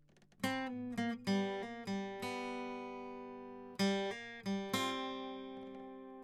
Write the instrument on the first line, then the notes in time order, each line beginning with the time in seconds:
acoustic guitar
0.44 C4
0.67 B3
0.98 A#3
1.27 G3 B3
1.64 A#3
1.88 G3
2.23 B3
3.80 G3
4.12 A#3
4.46 G3
4.74 C4 F4